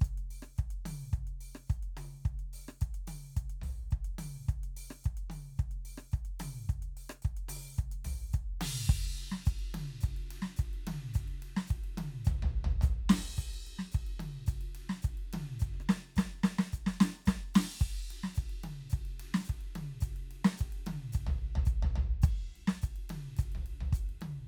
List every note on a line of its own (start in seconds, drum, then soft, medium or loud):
0.01 kick medium
0.01 hi-hat pedal soft
0.05 closed hi-hat medium
0.18 closed hi-hat soft
0.31 open hi-hat medium
0.43 cross-stick medium
0.57 kick medium
0.57 closed hi-hat soft
0.57 hi-hat pedal soft
0.71 closed hi-hat soft
0.86 open hi-hat medium
0.86 high tom loud
1.12 kick medium
1.12 closed hi-hat soft
1.12 hi-hat pedal soft
1.27 closed hi-hat soft
1.41 open hi-hat medium
1.55 cross-stick medium
1.68 closed hi-hat soft
1.68 kick medium
1.68 hi-hat pedal soft
1.83 closed hi-hat soft
1.97 open hi-hat medium
1.97 high tom medium
2.24 kick medium
2.24 closed hi-hat soft
2.24 hi-hat pedal soft
2.40 closed hi-hat soft
2.54 open hi-hat medium
2.69 cross-stick medium
2.79 kick medium
2.79 closed hi-hat medium
2.79 hi-hat pedal soft
2.95 closed hi-hat soft
3.08 open hi-hat medium
3.08 high tom medium
3.36 kick medium
3.36 closed hi-hat medium
3.36 hi-hat pedal soft
3.50 closed hi-hat soft
3.62 floor tom medium
3.62 open hi-hat medium
3.91 kick medium
3.91 hi-hat pedal soft
3.91 open hi-hat soft
4.05 closed hi-hat soft
4.19 open hi-hat medium
4.19 high tom loud
4.47 kick medium
4.47 closed hi-hat soft
4.47 hi-hat pedal soft
4.64 closed hi-hat soft
4.77 open hi-hat medium
4.91 cross-stick medium
5.03 kick medium
5.03 closed hi-hat medium
5.03 hi-hat pedal soft
5.17 closed hi-hat soft
5.30 open hi-hat medium
5.30 high tom medium
5.58 kick medium
5.58 closed hi-hat soft
5.58 hi-hat pedal soft
5.72 closed hi-hat soft
5.86 open hi-hat medium
5.98 cross-stick medium
6.12 kick medium
6.12 hi-hat pedal soft
6.12 open hi-hat soft
6.25 closed hi-hat soft
6.40 open hi-hat medium
6.40 high tom medium
6.69 kick medium
6.69 closed hi-hat soft
6.69 hi-hat pedal soft
6.83 closed hi-hat soft
6.97 open hi-hat medium
7.10 cross-stick medium
7.23 kick medium
7.23 hi-hat pedal soft
7.23 open hi-hat medium
7.37 closed hi-hat soft
7.49 open hi-hat loud
7.49 high tom medium
7.76 kick medium
7.76 closed hi-hat medium
7.76 hi-hat pedal soft
7.92 closed hi-hat medium
8.05 floor tom medium
8.05 open hi-hat medium
8.32 kick medium
8.32 closed hi-hat medium
8.32 hi-hat pedal soft
8.61 high tom loud
8.61 crash loud
8.89 kick loud
8.89 hi-hat pedal soft
8.89 ride soft
9.05 ride soft
9.19 ride medium
9.32 snare medium
9.46 kick medium
9.46 hi-hat pedal medium
9.46 ride medium
9.60 ride soft
9.75 high tom loud
9.75 ride medium
10.01 kick medium
10.01 hi-hat pedal medium
10.01 ride medium
10.17 ride soft
10.31 ride medium
10.43 snare medium
10.57 kick medium
10.57 hi-hat pedal medium
10.57 ride medium
10.74 ride soft
10.88 kick soft
10.88 high tom loud
10.88 ride medium
11.14 kick medium
11.14 hi-hat pedal medium
11.14 ride medium
11.28 ride soft
11.43 ride medium
11.57 snare loud
11.68 kick medium
11.68 hi-hat pedal medium
11.68 ride medium
11.84 ride soft
11.98 high tom loud
11.98 ride medium
12.25 kick medium
12.25 floor tom loud
12.25 hi-hat pedal medium
12.43 floor tom loud
12.55 kick soft
12.65 floor tom loud
12.82 kick medium
12.82 floor tom loud
12.82 hi-hat pedal medium
13.10 snare loud
13.10 crash medium
13.38 kick medium
13.38 hi-hat pedal medium
13.42 ride medium
13.54 ride soft
13.67 ride medium
13.72 kick soft
13.79 snare medium
13.92 kick medium
13.92 hi-hat pedal medium
13.92 ride soft
14.07 ride soft
14.20 high tom loud
14.20 ride medium
14.47 kick medium
14.47 hi-hat pedal medium
14.47 ride medium
14.62 ride medium
14.75 ride medium
14.81 kick soft
14.90 snare medium
15.03 kick medium
15.03 hi-hat pedal medium
15.03 ride medium
15.18 ride soft
15.33 kick soft
15.33 high tom loud
15.33 ride medium
15.60 kick medium
15.60 hi-hat pedal medium
15.75 cross-stick soft
15.81 cross-stick soft
15.89 snare loud
16.16 kick medium
16.16 snare loud
16.16 hi-hat pedal medium
16.44 snare loud
16.59 snare loud
16.73 kick medium
16.73 hi-hat pedal medium
16.87 snare loud
17.01 snare loud
17.26 kick medium
17.26 snare loud
17.26 hi-hat pedal medium
17.55 kick soft
17.55 snare loud
17.55 crash medium
17.80 kick medium
17.80 hi-hat pedal medium
17.86 ride soft
18.11 ride medium
18.24 snare medium
18.35 kick medium
18.35 hi-hat pedal medium
18.35 ride medium
18.50 ride soft
18.64 high tom loud
18.64 ride medium
18.70 kick soft
18.90 kick medium
18.90 hi-hat pedal medium
18.90 ride medium
19.06 ride soft
19.20 ride medium
19.26 kick soft
19.35 snare medium
19.45 hi-hat pedal medium
19.50 kick medium
19.50 ride medium
19.61 ride soft
19.76 kick soft
19.76 high tom loud
19.76 ride medium
20.01 kick medium
20.01 hi-hat pedal medium
20.01 ride medium
20.17 ride soft
20.31 ride medium
20.45 snare loud
20.58 kick medium
20.58 hi-hat pedal medium
20.58 ride medium
20.73 ride medium
20.87 kick soft
20.87 high tom loud
20.87 ride medium
21.13 kick medium
21.13 hi-hat pedal medium
21.13 ride medium
21.27 floor tom loud
21.56 floor tom loud
21.66 kick medium
21.66 hi-hat pedal medium
21.83 floor tom loud
21.96 floor tom loud
22.22 kick loud
22.22 hi-hat pedal medium
22.22 ride medium
22.56 ride soft
22.68 snare loud
22.82 kick medium
22.82 hi-hat pedal medium
22.82 ride medium
22.97 ride soft
23.10 high tom loud
23.10 ride medium
23.37 kick medium
23.37 hi-hat pedal medium
23.37 ride medium
23.53 floor tom medium
23.53 ride soft
23.67 ride medium
23.81 floor tom loud
23.93 kick medium
23.93 hi-hat pedal medium
23.93 ride medium
24.10 ride soft
24.22 high tom loud
24.22 ride medium